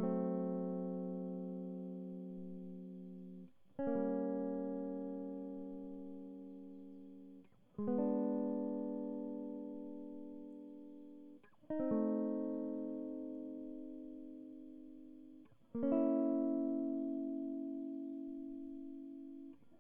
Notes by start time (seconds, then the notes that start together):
0.00 F#3 A3
0.04 C4
3.80 C#4
3.88 G3 A#3
7.80 G#3
7.89 B3
7.99 D4
11.71 D#4
11.81 C4
11.92 A3
15.76 A#3
15.84 C#4
15.93 E4